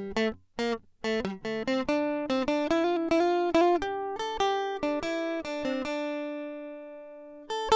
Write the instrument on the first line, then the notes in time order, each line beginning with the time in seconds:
acoustic guitar
0.00 G3
0.18 A3
0.61 A#3
1.06 A3
1.47 A3
1.70 C4
1.91 D4
2.32 C4
2.50 D4
2.73 E4
2.86 F4
2.98 E4
3.14 E4
3.23 F4
3.57 E4
3.67 F4
3.84 G4
4.22 A4
4.43 G4
4.85 D4
5.05 E4
5.47 D4
5.87 D4
7.52 A4